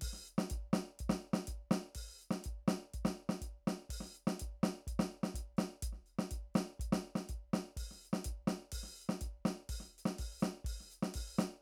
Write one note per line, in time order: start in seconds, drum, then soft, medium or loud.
0.01 open hi-hat medium
0.01 kick soft
0.07 kick soft
0.13 snare soft
0.25 open hi-hat soft
0.25 hi-hat pedal medium
0.38 snare medium
0.50 closed hi-hat medium
0.50 kick soft
0.73 snare medium
0.73 hi-hat pedal soft
0.99 kick soft
0.99 closed hi-hat medium
1.09 snare medium
1.19 hi-hat pedal soft
1.33 snare medium
1.47 closed hi-hat medium
1.47 kick soft
1.71 snare medium
1.95 open hi-hat medium
1.95 kick soft
2.21 hi-hat pedal medium
2.31 snare medium
2.44 closed hi-hat medium
2.44 kick soft
2.68 snare medium
2.93 closed hi-hat soft
2.93 kick soft
3.05 snare medium
3.29 snare medium
3.41 closed hi-hat medium
3.41 kick soft
3.67 snare medium
3.89 open hi-hat medium
3.89 kick soft
4.00 snare soft
4.15 hi-hat pedal soft
4.27 snare medium
4.39 closed hi-hat medium
4.39 kick soft
4.63 snare medium
4.87 closed hi-hat medium
4.87 kick soft
4.92 kick soft
4.99 snare medium
5.23 snare medium
5.34 closed hi-hat medium
5.34 kick soft
5.39 kick soft
5.57 snare medium
5.57 hi-hat pedal soft
5.82 closed hi-hat medium
5.82 kick soft
5.92 snare soft
6.06 open hi-hat soft
6.06 hi-hat pedal soft
6.19 snare medium
6.31 closed hi-hat medium
6.31 kick soft
6.54 snare medium
6.54 hi-hat pedal soft
6.79 closed hi-hat medium
6.79 kick soft
6.84 kick soft
6.92 snare medium
7.07 closed hi-hat soft
7.15 snare soft
7.29 closed hi-hat medium
7.29 kick soft
7.34 kick soft
7.53 snare medium
7.77 open hi-hat medium
7.77 kick soft
7.81 kick soft
7.91 snare soft
8.05 hi-hat pedal soft
8.13 snare medium
8.24 closed hi-hat medium
8.24 kick soft
8.30 kick soft
8.47 snare medium
8.72 open hi-hat medium
8.72 kick soft
8.83 snare soft
8.95 open hi-hat soft
9.01 hi-hat pedal soft
9.09 snare medium
9.21 closed hi-hat medium
9.21 kick soft
9.26 kick soft
9.45 snare medium
9.69 open hi-hat medium
9.69 kick soft
9.74 kick soft
9.80 snare soft
9.94 hi-hat pedal medium
9.94 open hi-hat soft
10.05 snare medium
10.18 open hi-hat medium
10.18 kick soft
10.24 kick soft
10.40 snare medium
10.40 hi-hat pedal medium
10.64 open hi-hat medium
10.64 kick soft
10.80 snare soft
10.91 open hi-hat soft
10.91 hi-hat pedal medium
11.03 snare medium
11.14 open hi-hat medium
11.14 kick soft
11.20 kick soft
11.38 snare medium
11.38 hi-hat pedal medium